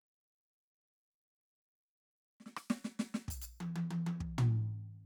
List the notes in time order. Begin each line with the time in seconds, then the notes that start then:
2.40 snare
2.46 snare
2.57 cross-stick
2.70 snare
2.84 snare
2.99 snare
3.14 snare
3.28 kick, percussion
3.42 percussion
3.60 high tom
3.76 high tom
3.91 high tom
4.06 high tom
4.20 kick
4.38 floor tom